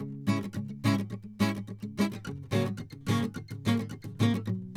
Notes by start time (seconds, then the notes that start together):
0.01 C#3 G#3
0.28 G#3 C#4 E4
0.55 C#3 G#3 C#4
0.69 C#3 G#3
0.85 G#3 C#4 E4
1.41 G#3 C#4 E4
1.84 C#3
1.99 G#3 C#4 E4
2.29 C#3
2.52 C#3 F#3 A#3
3.09 C#3 A#3 C#4
3.23 C#4
3.66 C#3 A#3 C#4
3.81 A#3
4.21 C#3 A#3 C#4
4.34 A#3
4.46 B2 F#3